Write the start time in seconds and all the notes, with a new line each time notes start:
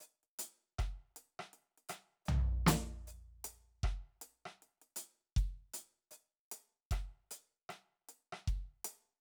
0.01 closed hi-hat, hi-hat pedal
0.24 closed hi-hat
0.40 closed hi-hat
0.79 kick, cross-stick, closed hi-hat
1.17 closed hi-hat
1.40 cross-stick
1.54 closed hi-hat
1.78 closed hi-hat
1.90 open hi-hat, cross-stick
2.26 floor tom, hi-hat pedal
2.67 closed hi-hat, snare
3.08 hi-hat pedal
3.45 closed hi-hat
3.84 kick, cross-stick
4.22 closed hi-hat
4.46 cross-stick
4.63 closed hi-hat
4.82 closed hi-hat
4.97 closed hi-hat
5.37 kick, closed hi-hat
5.74 open hi-hat
6.12 closed hi-hat, hi-hat pedal
6.52 closed hi-hat
6.92 kick, cross-stick, closed hi-hat
7.32 closed hi-hat
7.70 cross-stick, closed hi-hat
8.09 closed hi-hat
8.33 cross-stick
8.48 kick, closed hi-hat
8.85 open hi-hat